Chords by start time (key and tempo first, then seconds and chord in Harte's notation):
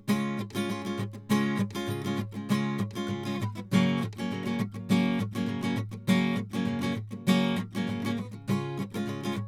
C# major, 100 BPM
0.00 C#:maj
3.69 F#:maj
8.49 C#:maj